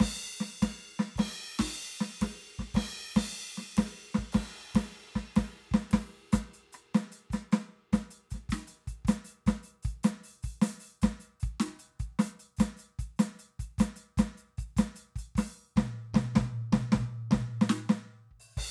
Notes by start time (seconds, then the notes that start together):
0.01 kick, snare, crash
0.41 snare
0.63 kick, snare, ride bell
1.00 snare
1.17 kick, snare, crash
1.60 kick, snare, crash
2.01 snare
2.22 kick, snare, ride
2.60 kick, snare
2.75 kick, snare, crash
3.16 kick, snare, crash
3.58 snare
3.78 kick, snare, ride
4.15 kick, snare
4.33 kick, snare, crash
4.75 kick, snare, ride
5.16 kick, snare
5.37 kick, snare, ride
5.72 kick, snare
5.92 kick, snare, ride
6.33 open hi-hat, kick, snare, hi-hat pedal
6.54 closed hi-hat
6.73 closed hi-hat, cross-stick, hi-hat pedal
6.95 open hi-hat, snare, hi-hat pedal
7.13 closed hi-hat
7.31 closed hi-hat, kick, snare, hi-hat pedal
7.53 open hi-hat, snare, hi-hat pedal
7.93 open hi-hat, kick, snare, hi-hat pedal
8.11 closed hi-hat
8.31 closed hi-hat, kick, hi-hat pedal
8.35 snare
8.50 closed hi-hat, kick, snare, hi-hat pedal
8.68 closed hi-hat
8.88 open hi-hat, kick, hi-hat pedal
9.06 open hi-hat, kick, snare
9.11 hi-hat pedal
9.25 open hi-hat
9.47 open hi-hat, kick, snare, hi-hat pedal
9.64 open hi-hat
9.83 open hi-hat, kick
10.04 open hi-hat, snare, hi-hat pedal
10.24 open hi-hat
10.43 open hi-hat, kick
10.63 open hi-hat, snare
10.81 open hi-hat
11.03 closed hi-hat, kick, snare
11.21 open hi-hat
11.41 open hi-hat, kick
11.61 closed hi-hat, snare
11.80 closed hi-hat
12.00 open hi-hat, kick, hi-hat pedal
12.20 open hi-hat, snare
12.28 hi-hat pedal
12.40 closed hi-hat
12.57 closed hi-hat, kick, snare, hi-hat pedal
12.78 closed hi-hat, hi-hat pedal
13.00 open hi-hat, kick, hi-hat pedal
13.17 closed hi-hat, snare, hi-hat pedal
13.35 hi-hat pedal
13.40 closed hi-hat
13.60 open hi-hat, kick, hi-hat pedal
13.79 open hi-hat, kick, snare, hi-hat pedal
13.97 closed hi-hat
14.18 open hi-hat, kick, snare, hi-hat pedal
14.38 open hi-hat, hi-hat pedal
14.58 open hi-hat, kick, hi-hat pedal
14.77 closed hi-hat, kick, snare
14.96 closed hi-hat, hi-hat pedal
15.17 closed hi-hat, kick, hi-hat pedal
15.36 open hi-hat, kick, snare
15.77 kick, snare, mid tom
16.14 kick, snare, mid tom
16.36 kick, snare, mid tom
16.73 kick, snare, mid tom
16.93 kick, snare, mid tom
17.32 kick, snare, mid tom
17.62 snare
17.70 snare
17.90 snare
18.32 kick
18.41 open hi-hat
18.56 kick
18.58 kick, crash